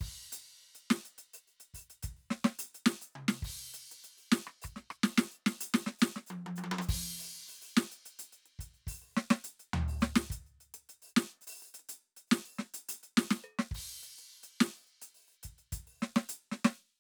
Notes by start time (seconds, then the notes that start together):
0.01 kick, hi-hat pedal, crash
0.07 kick
0.33 closed hi-hat
0.62 closed hi-hat
0.76 closed hi-hat
0.91 snare
1.06 closed hi-hat
1.19 closed hi-hat
1.34 open hi-hat, hi-hat pedal
1.48 open hi-hat
1.61 closed hi-hat
1.75 open hi-hat, kick
1.91 closed hi-hat
2.03 closed hi-hat, kick
2.10 kick
2.17 open hi-hat
2.31 snare
2.44 snare, hi-hat pedal
2.60 closed hi-hat
2.75 closed hi-hat
2.87 snare
3.02 open hi-hat
3.12 hi-hat pedal, mid tom
3.29 snare
3.37 hi-hat pedal
3.43 kick, crash
3.49 kick
3.60 closed hi-hat
3.74 closed hi-hat
3.92 closed hi-hat
4.05 closed hi-hat
4.18 open hi-hat
4.32 snare
4.48 cross-stick
4.50 cross-stick
4.62 open hi-hat, kick, cross-stick, hi-hat pedal
4.77 snare
4.91 cross-stick
5.04 snare
5.08 hi-hat pedal
5.18 snare
5.32 open hi-hat
5.47 snare
5.61 closed hi-hat
5.75 snare
5.87 snare
5.99 snare, hi-hat pedal
6.17 snare
6.27 hi-hat pedal, high tom
6.47 high tom
6.57 hi-hat pedal, high tom
6.65 high tom
6.72 high tom
6.79 hi-hat pedal, high tom
6.89 kick, crash
7.20 open hi-hat
7.36 open hi-hat
7.49 open hi-hat
7.62 open hi-hat
7.77 snare
7.92 closed hi-hat
8.06 closed hi-hat
8.20 closed hi-hat
8.33 closed hi-hat
8.47 closed hi-hat
8.60 closed hi-hat, kick
8.74 open hi-hat
8.88 open hi-hat, kick
9.03 open hi-hat
9.15 snare, hi-hat pedal
9.31 snare
9.45 closed hi-hat
9.60 closed hi-hat
9.74 floor tom
9.89 open hi-hat
10.02 snare, hi-hat pedal
10.16 snare
10.24 hi-hat pedal
10.31 closed hi-hat, kick
10.36 kick
10.47 closed hi-hat
10.61 closed hi-hat
10.75 closed hi-hat
10.90 closed hi-hat
11.03 open hi-hat
11.10 hi-hat pedal
11.17 snare
11.42 hi-hat pedal
11.48 open hi-hat
11.63 open hi-hat
11.75 closed hi-hat
11.80 closed hi-hat
11.90 closed hi-hat
12.17 closed hi-hat
12.28 hi-hat pedal
12.32 snare
12.46 open hi-hat
12.59 snare
12.75 open hi-hat
12.89 closed hi-hat
13.04 closed hi-hat
13.18 snare
13.31 snare, hi-hat pedal
13.45 percussion
13.60 snare
13.67 hi-hat pedal
13.72 kick, crash
13.78 kick
13.92 closed hi-hat
14.03 closed hi-hat
14.19 closed hi-hat
14.32 closed hi-hat
14.44 closed hi-hat
14.61 snare
14.76 open hi-hat
14.87 closed hi-hat
15.02 open hi-hat
15.15 open hi-hat
15.29 open hi-hat
15.44 closed hi-hat, kick
15.59 closed hi-hat
15.73 open hi-hat, kick
15.88 open hi-hat
16.03 snare
16.17 snare
16.30 closed hi-hat
16.52 snare
16.65 snare
16.75 hi-hat pedal